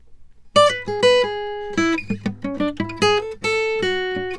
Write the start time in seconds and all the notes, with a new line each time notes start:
0.56 D5
0.70 B4
0.88 G#4
1.03 B4
1.24 G#4
1.78 E4
2.26 B3
2.45 C#4
2.61 D4
2.80 E4
3.02 G#4
3.19 A4
3.45 A4
3.83 F#4